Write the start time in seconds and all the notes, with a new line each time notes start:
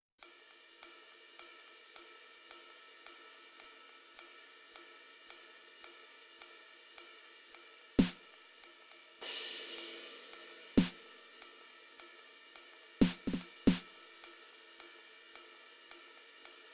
0.18 hi-hat pedal
0.23 ride
0.40 ride
0.51 ride
0.81 hi-hat pedal, ride
1.03 ride
1.12 ride
1.39 hi-hat pedal, ride
1.60 ride
1.68 ride
1.96 hi-hat pedal, ride
2.15 ride
2.24 ride
2.49 hi-hat pedal, ride
2.70 ride
2.78 ride
3.05 hi-hat pedal, ride
3.24 ride
3.35 ride
3.49 ride
3.60 hi-hat pedal, ride
3.89 ride
4.14 hi-hat pedal
4.19 ride
4.39 ride
4.47 ride
4.71 hi-hat pedal
4.76 ride
4.94 ride
5.04 ride
5.26 hi-hat pedal
5.30 ride
5.48 ride
5.57 ride
5.81 hi-hat pedal, ride
6.04 ride
6.12 ride
6.38 hi-hat pedal, ride
6.60 ride
6.69 ride
6.95 hi-hat pedal, ride
7.18 ride
7.25 ride
7.49 hi-hat pedal
7.55 ride
7.73 ride
7.81 ride
7.99 snare, hi-hat pedal
8.08 ride
8.24 ride
8.34 ride
8.59 hi-hat pedal
8.64 ride
8.82 ride
8.92 ride
9.18 hi-hat pedal, ride
9.41 ride
9.49 ride
9.74 hi-hat pedal, ride
9.96 ride
10.06 ride
10.30 hi-hat pedal, ride
10.51 ride
10.61 ride
10.78 snare, hi-hat pedal
10.86 ride
11.06 ride
11.15 ride
11.40 hi-hat pedal, ride
11.61 ride
11.70 ride
11.97 hi-hat pedal, ride
12.19 ride
12.28 ride
12.55 hi-hat pedal, ride
12.73 ride
12.83 ride
13.01 snare, hi-hat pedal
13.11 ride
13.27 snare
13.33 snare
13.41 ride
13.65 snare, hi-hat pedal
13.69 ride
13.88 ride
13.96 ride
14.22 hi-hat pedal, ride
14.44 ride
14.53 ride
14.78 hi-hat pedal, ride
14.99 ride
15.07 ride
15.33 hi-hat pedal, ride
15.55 ride
15.63 ride
15.89 hi-hat pedal, ride
16.08 ride
16.17 ride
16.42 hi-hat pedal, ride
16.65 ride